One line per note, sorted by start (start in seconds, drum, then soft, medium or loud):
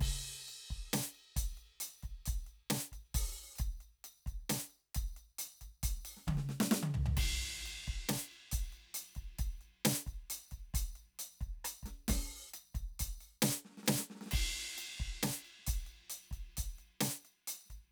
0.01 kick medium
0.01 crash loud
0.49 closed hi-hat medium
0.71 kick soft
0.71 closed hi-hat soft
0.93 closed hi-hat loud
0.93 snare loud
1.15 closed hi-hat soft
1.37 closed hi-hat loud
1.37 kick soft
1.51 snare soft
1.57 closed hi-hat soft
1.80 closed hi-hat loud
2.03 kick soft
2.03 closed hi-hat soft
2.26 closed hi-hat loud
2.26 kick soft
2.38 snare soft
2.47 closed hi-hat soft
2.70 snare loud
2.70 closed hi-hat loud
2.92 kick soft
2.92 closed hi-hat soft
3.15 kick soft
3.15 percussion loud
3.56 kick soft
3.56 closed hi-hat medium
3.56 hi-hat pedal medium
3.81 closed hi-hat soft
4.04 closed hi-hat medium
4.26 kick soft
4.26 closed hi-hat soft
4.50 closed hi-hat loud
4.50 snare loud
4.70 closed hi-hat soft
4.95 kick soft
4.95 closed hi-hat loud
5.17 closed hi-hat soft
5.39 closed hi-hat loud
5.61 kick soft
5.61 closed hi-hat medium
5.83 closed hi-hat loud
5.83 kick soft
5.96 snare soft
6.05 percussion medium
6.17 snare soft
6.27 kick soft
6.27 high tom loud
6.37 snare medium
6.49 snare medium
6.60 snare loud
6.71 snare loud
6.83 closed hi-hat soft
6.83 high tom loud
6.94 floor tom medium
7.06 floor tom medium
7.17 kick medium
7.17 ride loud
7.66 closed hi-hat medium
7.87 kick soft
7.87 closed hi-hat soft
8.09 snare loud
8.09 closed hi-hat medium
8.32 closed hi-hat soft
8.52 closed hi-hat loud
8.52 kick soft
8.73 closed hi-hat soft
8.95 closed hi-hat loud
9.15 kick soft
9.15 closed hi-hat soft
9.39 kick soft
9.39 closed hi-hat medium
9.61 closed hi-hat soft
9.85 closed hi-hat loud
9.85 snare loud
10.07 kick soft
10.07 closed hi-hat soft
10.30 closed hi-hat loud
10.51 kick soft
10.51 closed hi-hat soft
10.74 closed hi-hat loud
10.74 kick soft
10.96 closed hi-hat soft
11.19 closed hi-hat loud
11.41 kick soft
11.41 closed hi-hat soft
11.59 kick soft
11.65 closed hi-hat loud
11.65 cross-stick medium
11.83 kick soft
11.83 snare soft
11.83 closed hi-hat medium
12.08 kick soft
12.08 snare medium
12.08 percussion loud
12.49 hi-hat pedal soft
12.54 closed hi-hat loud
12.75 kick soft
12.75 closed hi-hat medium
13.00 closed hi-hat loud
13.00 kick soft
13.21 percussion medium
13.42 snare loud
13.42 percussion loud
13.65 snare soft
13.69 snare soft
13.73 snare soft
13.78 snare medium
13.83 snare soft
13.83 hi-hat pedal medium
13.88 snare loud
13.99 snare medium
14.10 snare soft
14.15 snare soft
14.21 snare medium
14.26 snare medium
14.31 kick medium
14.31 snare soft
14.31 ride loud
14.78 closed hi-hat loud
15.00 kick soft
15.00 closed hi-hat soft
15.23 snare loud
15.23 closed hi-hat medium
15.45 closed hi-hat soft
15.59 snare soft
15.67 closed hi-hat loud
15.67 kick soft
15.87 closed hi-hat soft
16.03 snare soft
16.10 closed hi-hat loud
16.31 kick soft
16.31 closed hi-hat medium
16.57 closed hi-hat loud
16.57 kick soft
16.79 closed hi-hat soft
17.01 closed hi-hat loud
17.01 snare loud
17.25 closed hi-hat soft
17.48 closed hi-hat loud
17.66 snare soft
17.70 kick soft
17.70 closed hi-hat soft